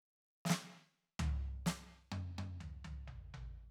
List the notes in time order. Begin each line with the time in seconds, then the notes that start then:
0.45 snare
0.50 snare
1.19 mid tom
1.66 snare
2.12 high tom
2.38 high tom
2.61 mid tom
2.85 mid tom
3.08 floor tom
3.34 floor tom